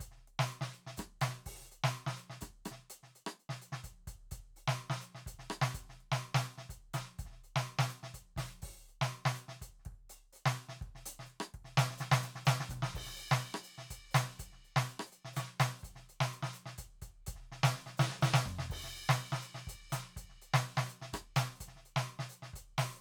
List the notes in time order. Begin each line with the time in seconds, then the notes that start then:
0.00 closed hi-hat, kick
0.09 kick, snare
0.17 snare
0.27 closed hi-hat
0.39 snare
0.47 hi-hat pedal
0.51 closed hi-hat
0.61 snare
0.73 closed hi-hat
0.86 snare
0.96 closed hi-hat, kick, cross-stick, hi-hat pedal
1.21 closed hi-hat, snare
1.28 snare
1.46 open hi-hat, kick
1.55 snare
1.61 snare
1.71 closed hi-hat
1.84 snare
1.96 closed hi-hat
2.06 snare
2.16 closed hi-hat, hi-hat pedal
2.30 snare
2.41 closed hi-hat, kick, cross-stick
2.65 closed hi-hat, cross-stick
2.71 snare
2.90 closed hi-hat
3.03 snare
3.15 closed hi-hat
3.26 cross-stick
3.39 closed hi-hat
3.49 snare
3.56 hi-hat pedal
3.62 closed hi-hat
3.72 snare
3.84 closed hi-hat, kick
4.07 closed hi-hat, kick
4.15 kick
4.31 closed hi-hat, kick, snare
4.38 snare
4.56 open hi-hat, hi-hat pedal
4.67 snare
4.80 closed hi-hat
4.90 snare
5.01 closed hi-hat, hi-hat pedal
5.15 snare
5.26 closed hi-hat, kick
5.34 kick
5.39 snare
5.50 cross-stick
5.61 snare
5.74 closed hi-hat, kick
5.89 snare
6.00 closed hi-hat
6.12 snare
6.24 closed hi-hat
6.34 snare
6.42 hi-hat pedal
6.46 closed hi-hat
6.58 snare
6.69 closed hi-hat, kick
6.94 closed hi-hat, kick, snare
7.19 closed hi-hat, kick
7.25 kick, snare
7.28 kick, snare
7.44 closed hi-hat
7.56 snare
7.67 closed hi-hat
7.79 snare
7.89 hi-hat pedal
8.03 snare
8.14 closed hi-hat, kick
8.36 open hi-hat, kick, snare
8.62 open hi-hat, kick, snare
8.72 snare
8.88 closed hi-hat
9.01 snare
9.13 closed hi-hat
9.25 snare
9.35 closed hi-hat, hi-hat pedal
9.48 snare
9.61 closed hi-hat, kick
9.79 snare
9.85 kick, closed hi-hat
9.92 kick
10.09 open hi-hat
10.33 closed hi-hat, hi-hat pedal
10.46 snare
10.58 closed hi-hat
10.69 snare
10.81 kick, closed hi-hat
10.87 kick
10.95 snare
11.06 closed hi-hat
11.19 snare
11.25 hi-hat pedal
11.30 closed hi-hat
11.40 cross-stick
11.54 kick, closed hi-hat
11.64 snare
11.77 snare
11.90 snare
11.98 snare, hi-hat pedal
12.11 snare
12.22 snare, hi-hat pedal
12.35 snare
12.45 snare, hi-hat pedal
12.60 snare
12.69 kick, hi-hat pedal, high tom
12.82 snare
12.95 kick, crash
13.01 kick
13.06 snare
13.16 closed hi-hat, hi-hat pedal
13.31 snare
13.38 hi-hat pedal
13.54 cross-stick
13.63 hi-hat pedal
13.68 closed hi-hat
13.78 snare
13.90 closed hi-hat, kick
14.11 closed hi-hat, snare, hi-hat pedal
14.22 snare
14.39 closed hi-hat, kick
14.52 snare
14.64 closed hi-hat
14.76 snare
14.88 closed hi-hat
14.99 cross-stick
15.06 hi-hat pedal
15.12 closed hi-hat
15.25 snare
15.33 closed hi-hat, snare, hi-hat pedal
15.60 closed hi-hat, snare
15.79 kick, hi-hat pedal
15.84 closed hi-hat
15.95 snare
16.09 closed hi-hat
16.20 snare
16.26 hi-hat pedal
16.32 closed hi-hat
16.43 snare
16.53 closed hi-hat, hi-hat pedal
16.66 snare
16.78 closed hi-hat, kick
17.02 closed hi-hat, kick
17.07 kick, snare
17.26 closed hi-hat, kick
17.34 kick, snare
17.37 kick
17.41 snare
17.52 snare
17.63 snare, hi-hat pedal
17.75 snare
17.86 snare
17.97 snare, hi-hat pedal
18.11 snare
18.22 kick, snare, hi-hat pedal
18.34 snare
18.46 kick, hi-hat pedal, mid tom
18.59 snare
18.63 hi-hat pedal
18.70 kick, crash
18.76 kick
18.78 kick
18.84 snare
18.96 closed hi-hat
19.09 snare
19.21 closed hi-hat
19.32 snare
19.41 closed hi-hat, hi-hat pedal
19.54 snare
19.67 open hi-hat, kick
19.73 kick
19.89 closed hi-hat, snare, hi-hat pedal
20.16 closed hi-hat, kick
20.24 kick
20.29 snare
20.41 closed hi-hat
20.54 snare
20.66 closed hi-hat
20.77 snare
20.86 closed hi-hat, hi-hat pedal
21.02 snare
21.13 closed hi-hat, kick, cross-stick
21.36 closed hi-hat, snare
21.56 hi-hat pedal
21.60 closed hi-hat, kick
21.68 snare
21.76 snare
21.85 closed hi-hat
21.96 snare
22.09 closed hi-hat
22.19 snare
22.29 closed hi-hat, hi-hat pedal
22.42 snare
22.53 closed hi-hat, kick
22.78 open hi-hat, snare
22.96 hi-hat pedal